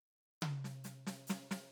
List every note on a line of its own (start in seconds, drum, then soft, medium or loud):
0.41 hi-hat pedal soft
0.41 high tom loud
0.64 snare soft
0.84 snare soft
0.84 hi-hat pedal medium
1.07 snare medium
1.27 snare medium
1.27 hi-hat pedal medium
1.51 snare medium